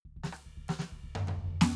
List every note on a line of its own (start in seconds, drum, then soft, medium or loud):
0.06 kick soft
0.17 kick soft
0.24 snare medium
0.24 ride soft
0.33 cross-stick medium
0.37 ride soft
0.47 kick soft
0.58 kick soft
0.69 snare medium
0.69 ride soft
0.79 snare medium
0.79 ride soft
0.93 kick soft
1.04 kick soft
1.16 floor tom loud
1.16 high tom medium
1.28 floor tom medium
1.28 high tom medium
1.38 kick soft
1.48 kick soft
1.62 snare loud
1.62 ride medium